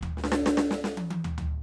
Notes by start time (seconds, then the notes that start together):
0.03 kick, floor tom
0.17 snare
0.24 snare
0.32 snare
0.42 kick, snare
0.57 snare
0.71 snare
0.84 snare
0.97 high tom
1.11 high tom
1.24 floor tom
1.38 floor tom
1.49 kick